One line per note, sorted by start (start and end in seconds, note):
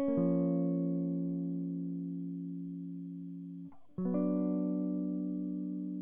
0.00 3.71 C#4
0.09 3.27 A#3
0.18 3.71 F3
3.99 6.02 F#3
4.06 6.02 B3
4.15 6.02 D4